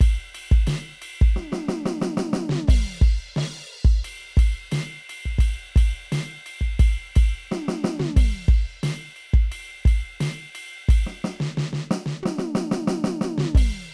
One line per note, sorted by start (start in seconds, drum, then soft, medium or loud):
0.01 kick loud
0.01 ride loud
0.35 ride loud
0.52 kick loud
0.67 snare loud
0.67 ride loud
1.03 ride loud
1.22 kick loud
1.36 snare medium
1.36 floor tom medium
1.52 snare medium
1.52 floor tom loud
1.69 snare loud
1.69 floor tom loud
1.86 snare loud
1.86 floor tom loud
2.01 snare loud
2.01 floor tom loud
2.01 hi-hat pedal medium
2.18 snare loud
2.18 floor tom loud
2.23 hi-hat pedal medium
2.34 snare loud
2.34 floor tom loud
2.46 hi-hat pedal soft
2.50 snare loud
2.50 floor tom loud
2.68 kick loud
2.68 crash loud
2.68 ride loud
3.02 kick loud
3.02 snare soft
3.37 snare loud
3.37 crash loud
3.85 kick loud
3.85 snare soft
4.05 ride loud
4.38 kick loud
4.38 ride loud
4.72 snare loud
4.72 ride loud
5.10 ride loud
5.26 kick medium
5.39 kick loud
5.39 ride loud
5.77 kick loud
5.77 ride loud
6.13 snare loud
6.13 ride loud
6.47 ride loud
6.62 kick medium
6.80 kick loud
6.80 ride loud
7.16 kick loud
7.16 ride loud
7.51 snare medium
7.51 floor tom loud
7.68 snare loud
7.68 floor tom loud
7.84 snare loud
7.84 floor tom loud
7.92 hi-hat pedal soft
8.00 snare loud
8.00 floor tom loud
8.17 kick loud
8.17 crash medium
8.17 ride loud
8.49 kick loud
8.49 snare soft
8.84 snare loud
8.84 ride loud
9.17 ride medium
9.34 kick loud
9.52 ride loud
9.86 kick loud
9.86 ride loud
10.21 snare loud
10.21 ride loud
10.56 ride loud
10.89 kick loud
10.89 ride loud
11.07 snare medium
11.25 snare loud
11.41 snare loud
11.58 snare loud
11.74 snare loud
11.92 snare loud
12.07 snare loud
12.23 snare loud
12.23 floor tom loud
12.39 snare medium
12.39 floor tom loud
12.56 snare loud
12.56 floor tom loud
12.72 snare loud
12.72 floor tom loud
12.88 snare loud
12.88 floor tom loud
12.88 hi-hat pedal soft
13.05 snare loud
13.05 floor tom loud
13.22 snare loud
13.22 floor tom loud
13.39 snare loud
13.39 floor tom loud
13.56 kick loud
13.56 crash loud
13.56 ride loud